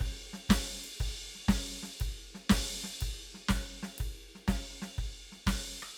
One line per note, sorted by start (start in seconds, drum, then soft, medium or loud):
0.01 kick medium
0.01 ride medium
0.34 snare medium
0.50 kick medium
0.50 snare loud
0.50 hi-hat pedal soft
0.50 ride loud
0.85 ride medium
1.01 kick medium
1.01 ride medium
1.36 snare soft
1.49 kick medium
1.49 snare loud
1.49 hi-hat pedal medium
1.49 ride medium
1.84 snare soft
2.01 kick medium
2.01 ride medium
2.36 snare soft
2.51 kick medium
2.51 snare loud
2.51 hi-hat pedal medium
2.51 ride loud
2.85 snare soft
3.02 kick medium
3.02 ride medium
3.35 snare soft
3.50 kick medium
3.50 snare loud
3.50 hi-hat pedal medium
3.50 ride medium
3.84 snare medium
3.99 kick medium
3.99 ride medium
4.36 snare soft
4.49 kick medium
4.49 snare loud
4.49 hi-hat pedal medium
4.49 ride medium
4.83 snare medium
4.95 hi-hat pedal soft
4.99 kick medium
4.99 ride medium
5.33 snare soft
5.47 kick medium
5.47 snare loud
5.47 hi-hat pedal medium
5.47 ride medium
5.83 cross-stick medium